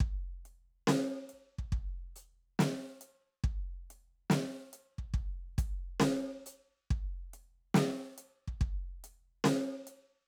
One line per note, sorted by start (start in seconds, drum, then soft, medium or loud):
0.01 kick medium
0.01 crash soft
0.46 closed hi-hat soft
0.88 snare loud
1.30 kick soft
1.30 closed hi-hat soft
1.59 kick medium
1.73 kick medium
1.78 ride soft
2.17 closed hi-hat medium
2.60 snare loud
3.02 closed hi-hat medium
3.44 kick medium
3.44 crash soft
3.91 closed hi-hat soft
4.31 snare loud
4.74 closed hi-hat medium
4.99 kick soft
5.14 kick medium
5.19 crash soft
5.19 ride soft
5.59 kick medium
5.59 closed hi-hat medium
6.01 snare loud
6.47 closed hi-hat medium
6.91 kick medium
6.91 crash soft
6.91 ride soft
7.34 closed hi-hat soft
7.75 snare loud
8.19 closed hi-hat medium
8.48 kick soft
8.62 kick medium
8.67 ride soft
9.05 closed hi-hat medium
9.45 snare loud
9.88 closed hi-hat medium